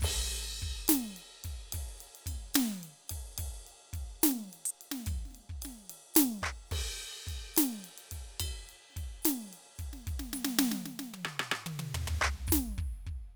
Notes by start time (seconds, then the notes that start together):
0.01 kick, hi-hat pedal, crash
0.09 kick
0.60 kick, ride
0.68 kick
0.88 snare, hi-hat pedal, ride
1.14 hi-hat pedal, ride
1.44 kick, ride
1.72 kick, ride
1.97 hi-hat pedal, ride
2.15 ride
2.26 kick, snare, ride bell
2.32 kick
2.54 snare, hi-hat pedal, ride bell
2.65 snare
2.83 ride
3.04 snare, hi-hat pedal
3.10 kick, ride
3.28 snare
3.38 kick, ride
3.44 kick
3.67 ride
3.93 kick, ride
3.99 kick
4.22 snare, hi-hat pedal, ride
4.31 snare
4.50 hi-hat pedal, ride
4.65 open hi-hat
4.81 ride
4.91 snare
5.00 snare
5.06 kick, ride bell
5.14 kick
5.25 snare
5.31 snare, ride
5.36 snare
5.49 kick
5.62 snare, hi-hat pedal, ride
5.90 ride
6.14 kick, snare, hi-hat pedal, ride
6.42 kick, percussion
6.66 hi-hat pedal
6.71 kick, crash
6.78 kick
7.26 kick, snare, ride
7.54 snare, hi-hat pedal, ride
7.83 snare, hi-hat pedal, ride
7.98 ride
8.10 kick, hi-hat pedal, ride
8.40 kick, ride bell
8.46 kick
8.65 hi-hat pedal, ride
8.90 snare
8.96 kick, ride
9.22 snare, hi-hat pedal, ride
9.37 snare
9.53 ride
9.61 snare
9.75 kick, hi-hat pedal, ride
9.93 snare
10.07 kick, ride
10.13 kick
10.19 snare
10.33 snare, hi-hat pedal
10.45 snare
10.59 snare
10.72 snare
10.86 snare
10.99 snare
11.14 high tom
11.25 cross-stick
11.39 cross-stick
11.52 cross-stick
11.66 mid tom
11.79 mid tom
11.94 floor tom
12.07 floor tom
12.21 percussion
12.47 kick, hi-hat pedal
12.52 kick, snare
12.78 kick
12.84 kick
13.07 kick